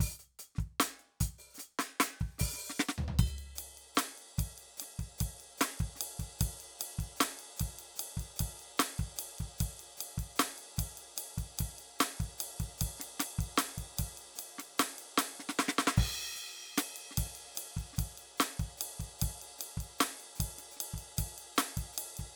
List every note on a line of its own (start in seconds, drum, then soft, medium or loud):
0.01 open hi-hat loud
0.01 kick medium
0.13 hi-hat pedal soft
0.20 closed hi-hat soft
0.40 closed hi-hat medium
0.56 kick medium
0.56 snare soft
0.61 closed hi-hat soft
0.81 closed hi-hat loud
0.81 snare loud
1.00 closed hi-hat soft
1.21 closed hi-hat loud
1.21 kick medium
1.39 open hi-hat soft
1.39 snare soft
1.55 snare soft
1.55 hi-hat pedal medium
1.60 closed hi-hat medium
1.80 closed hi-hat medium
1.80 snare loud
2.01 open hi-hat loud
2.01 snare loud
2.21 kick medium
2.21 open hi-hat soft
2.39 open hi-hat loud
2.39 kick medium
2.39 snare soft
2.54 snare soft
2.59 open hi-hat medium
2.70 snare medium
2.80 snare loud
2.80 hi-hat pedal soft
2.89 snare loud
2.99 floor tom loud
3.04 kick soft
3.09 floor tom medium
3.20 kick loud
3.20 ride bell loud
3.27 hi-hat pedal medium
3.39 ride soft
3.56 hi-hat pedal medium
3.56 ride loud
3.78 ride soft
3.96 snare loud
3.96 hi-hat pedal medium
4.00 ride loud
4.18 ride soft
4.38 kick medium
4.38 hi-hat pedal medium
4.38 ride medium
4.58 ride soft
4.78 hi-hat pedal medium
4.78 ride medium
4.82 snare soft
5.00 kick soft
5.00 ride soft
5.19 kick medium
5.19 hi-hat pedal medium
5.19 ride loud
5.41 ride soft
5.58 snare loud
5.58 hi-hat pedal medium
5.58 ride loud
5.80 kick medium
5.80 ride soft
5.96 snare soft
5.96 hi-hat pedal medium
6.02 ride loud
6.20 kick soft
6.20 snare soft
6.20 ride medium
6.40 kick medium
6.40 hi-hat pedal medium
6.40 ride loud
6.61 ride soft
6.80 hi-hat pedal medium
6.80 ride loud
6.99 kick medium
6.99 ride medium
7.17 hi-hat pedal medium
7.21 snare loud
7.21 ride loud
7.40 ride soft
7.57 hi-hat pedal medium
7.57 ride loud
7.62 kick medium
7.80 ride medium
7.97 hi-hat pedal medium
7.97 ride loud
8.18 kick soft
8.18 ride medium
8.37 hi-hat pedal medium
8.37 ride loud
8.41 kick medium
8.60 ride soft
8.78 snare loud
8.78 hi-hat pedal medium
8.78 ride loud
8.99 kick medium
8.99 ride soft
9.10 kick soft
9.17 hi-hat pedal medium
9.17 ride loud
9.39 kick soft
9.39 ride soft
9.59 kick medium
9.59 hi-hat pedal medium
9.59 ride loud
9.80 ride soft
9.98 hi-hat pedal medium
9.98 ride loud
10.18 kick medium
10.18 ride medium
10.37 snare loud
10.37 hi-hat pedal medium
10.37 ride loud
10.59 ride soft
10.77 kick medium
10.77 hi-hat pedal medium
10.77 ride loud
10.98 ride medium
11.17 hi-hat pedal medium
11.17 ride loud
11.38 kick medium
11.38 ride medium
11.58 kick medium
11.58 hi-hat pedal medium
11.58 ride loud
11.70 snare soft
11.79 ride soft
12.00 snare loud
12.00 hi-hat pedal medium
12.00 ride loud
12.21 kick medium
12.21 ride soft
12.39 hi-hat pedal medium
12.39 ride loud
12.61 kick medium
12.61 ride medium
12.79 kick medium
12.79 hi-hat pedal medium
12.79 ride loud
13.00 snare soft
13.00 ride medium
13.20 snare loud
13.20 hi-hat pedal medium
13.20 ride loud
13.39 kick medium
13.39 ride medium
13.57 snare loud
13.57 hi-hat pedal medium
13.57 ride loud
13.78 kick soft
13.78 ride medium
13.98 kick medium
13.98 hi-hat pedal medium
13.98 ride loud
14.18 ride soft
14.36 snare soft
14.36 hi-hat pedal medium
14.36 ride loud
14.59 snare medium
14.59 ride medium
14.79 snare loud
14.79 hi-hat pedal medium
14.79 ride loud
14.99 ride medium
15.18 snare loud
15.18 hi-hat pedal medium
15.18 ride loud
15.40 snare medium
15.50 snare loud
15.59 snare loud
15.59 hi-hat pedal medium
15.69 snare loud
15.79 snare loud
15.88 snare loud
15.97 kick medium
15.97 hi-hat pedal medium
15.97 crash loud
16.36 hi-hat pedal medium
16.78 snare loud
16.78 hi-hat pedal medium
16.78 ride loud
16.97 ride medium
17.12 snare soft
17.15 kick medium
17.15 snare soft
17.15 ride loud
17.19 snare soft
17.19 hi-hat pedal medium
17.21 snare soft
17.27 snare soft
17.36 ride soft
17.48 snare soft
17.55 hi-hat pedal medium
17.55 ride loud
17.77 kick medium
17.77 ride soft
17.94 snare soft
17.94 hi-hat pedal medium
17.99 kick medium
17.99 ride loud
18.18 ride soft
18.38 snare loud
18.38 hi-hat pedal medium
18.38 ride loud
18.60 kick medium
18.60 ride soft
18.78 hi-hat pedal medium
18.78 ride loud
19.00 kick soft
19.00 ride soft
19.20 kick medium
19.20 hi-hat pedal medium
19.20 ride loud
19.42 ride soft
19.59 snare soft
19.59 hi-hat pedal medium
19.59 ride loud
19.78 kick soft
19.78 ride medium
19.99 snare loud
19.99 hi-hat pedal medium
19.99 ride loud
20.21 ride soft
20.36 snare soft
20.36 hi-hat pedal medium
20.41 kick medium
20.41 ride loud
20.59 snare soft
20.59 ride medium
20.72 hi-hat pedal medium
20.77 snare soft
20.81 ride loud
20.94 kick soft
20.99 ride medium
21.18 kick medium
21.18 hi-hat pedal medium
21.18 ride loud
21.39 ride medium
21.56 snare loud
21.56 hi-hat pedal medium
21.56 ride loud
21.78 kick medium
21.78 ride medium
21.94 hi-hat pedal medium
21.99 ride loud
22.18 kick soft
22.18 ride medium